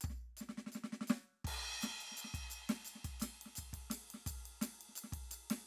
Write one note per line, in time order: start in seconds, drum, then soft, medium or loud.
0.01 kick medium
0.01 percussion medium
0.10 snare soft
0.37 snare soft
0.37 percussion medium
0.49 snare soft
0.58 snare soft
0.67 snare soft
0.72 snare soft
0.72 percussion medium
0.84 snare soft
0.92 snare soft
1.01 snare soft
1.07 snare medium
1.07 percussion medium
1.45 kick soft
1.45 ride loud
1.81 snare medium
1.81 ride bell soft
1.81 percussion medium
2.01 ride bell soft
2.12 snare soft
2.17 ride medium
2.17 percussion medium
2.24 snare soft
2.34 kick soft
2.34 ride bell soft
2.50 ride bell soft
2.50 percussion medium
2.69 snare medium
2.69 ride medium
2.85 ride bell soft
2.85 percussion medium
2.95 snare soft
3.05 kick soft
3.05 ride bell soft
3.20 snare medium
3.20 ride bell medium
3.20 percussion medium
3.41 ride medium
3.46 snare soft
3.56 kick soft
3.56 ride bell medium
3.56 percussion medium
3.73 kick soft
3.73 ride medium
3.90 snare soft
3.90 ride loud
3.90 percussion medium
4.10 snare soft
4.10 ride medium
4.26 kick soft
4.26 ride medium
4.26 percussion medium
4.46 ride medium
4.62 snare medium
4.62 ride medium
4.62 percussion medium
4.81 ride medium
4.89 snare soft
4.96 ride medium
4.96 percussion medium
5.04 snare soft
5.12 kick soft
5.12 ride medium
5.31 ride medium
5.31 percussion medium
5.50 snare medium
5.50 ride loud